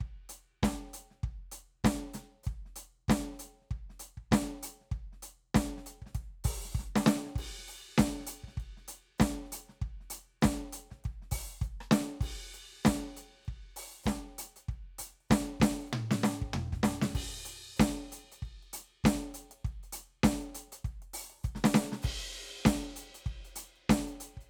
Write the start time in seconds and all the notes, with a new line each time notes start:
0.01 kick
0.30 closed hi-hat
0.63 kick, snare
0.88 snare
0.94 closed hi-hat
1.11 snare
1.21 kick, closed hi-hat
1.52 closed hi-hat
1.84 kick, snare
2.14 closed hi-hat, snare
2.44 kick, hi-hat pedal
2.66 snare
2.76 closed hi-hat
3.09 kick, snare
3.34 snare
3.40 closed hi-hat
3.62 snare
3.69 kick, closed hi-hat
3.90 snare
4.00 closed hi-hat
4.18 kick
4.32 kick, snare
4.59 snare
4.63 closed hi-hat
4.81 snare
4.92 kick, closed hi-hat
5.13 snare
5.23 closed hi-hat
5.55 kick, snare
5.78 snare
5.87 closed hi-hat
6.02 kick
6.06 snare
6.15 kick, closed hi-hat
6.45 open hi-hat, kick
6.65 snare
6.75 kick
6.79 snare
6.96 snare
7.07 snare
7.26 snare
7.36 kick, crash
7.59 snare
7.68 open hi-hat
7.98 kick, snare, hi-hat pedal
8.20 snare
8.27 closed hi-hat
8.44 kick, snare
8.58 kick, closed hi-hat
8.77 snare
8.88 closed hi-hat
9.19 kick, snare, hi-hat pedal
9.45 snare
9.53 closed hi-hat
9.69 snare
9.82 kick, closed hi-hat
10.01 snare
10.11 closed hi-hat
10.42 kick, snare, hi-hat pedal
10.73 closed hi-hat
10.91 kick, snare
11.04 kick, closed hi-hat
11.22 snare
11.32 open hi-hat, kick
11.62 kick, hi-hat pedal
11.81 cross-stick
11.92 snare
12.21 kick, crash
12.54 closed hi-hat
12.84 kick, snare, hi-hat pedal
13.17 closed hi-hat
13.45 kick, closed hi-hat
13.72 closed hi-hat
13.77 open hi-hat
14.04 kick, snare, hi-hat pedal
14.39 closed hi-hat
14.57 closed hi-hat
14.69 kick, closed hi-hat
14.99 open hi-hat, kick
15.21 open hi-hat
15.29 kick, snare, hi-hat pedal
15.60 kick, snare
15.79 open hi-hat
15.87 hi-hat pedal
15.93 kick, high tom
16.11 snare
16.24 snare
16.42 kick
16.54 mid tom
16.73 kick, snare
16.84 snare
17.02 snare
17.15 kick, crash
17.45 closed hi-hat
17.77 kick, snare, hi-hat pedal
18.13 closed hi-hat
18.32 closed hi-hat
18.43 kick, closed hi-hat
18.63 closed hi-hat
18.74 closed hi-hat
19.04 kick, snare
19.35 closed hi-hat
19.52 closed hi-hat
19.65 kick, closed hi-hat
19.83 closed hi-hat
19.93 closed hi-hat
20.24 kick, snare
20.41 closed hi-hat
20.55 closed hi-hat
20.73 closed hi-hat
20.85 kick, closed hi-hat
21.02 closed hi-hat
21.14 open hi-hat
21.30 open hi-hat
21.44 kick, hi-hat pedal
21.55 snare
21.64 snare
21.75 snare
21.92 snare
22.02 kick, hi-hat pedal, ride
22.20 closed hi-hat
22.35 crash
22.66 kick, snare
22.84 closed hi-hat
22.96 closed hi-hat
23.15 closed hi-hat
23.26 kick, closed hi-hat
23.45 closed hi-hat
23.56 closed hi-hat
23.76 closed hi-hat
23.90 kick, snare
24.08 closed hi-hat
24.21 closed hi-hat
24.37 closed hi-hat, kick